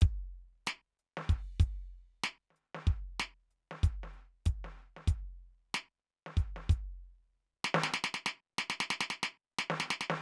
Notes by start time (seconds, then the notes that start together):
0.01 closed hi-hat, kick
0.67 closed hi-hat, snare
0.99 closed hi-hat
1.17 snare
1.29 closed hi-hat, kick, crash
1.60 closed hi-hat, kick
2.24 closed hi-hat, snare
2.50 snare
2.56 closed hi-hat
2.75 snare
2.87 kick, closed hi-hat
3.20 closed hi-hat, snare
3.51 closed hi-hat
3.71 snare
3.83 closed hi-hat, kick
4.03 snare
4.13 closed hi-hat
4.46 closed hi-hat, kick
4.64 snare
4.97 snare
5.08 closed hi-hat, kick
5.74 closed hi-hat, snare
6.26 snare
6.37 closed hi-hat, kick
6.56 snare
6.69 closed hi-hat, kick
7.64 snare
7.74 snare
7.84 snare
7.94 snare
8.04 snare
8.26 snare
8.58 snare
8.70 snare
8.80 snare
9.01 snare
9.10 snare
9.23 snare
9.59 snare
9.70 snare
9.80 snare
9.90 snare
10.01 snare
10.10 snare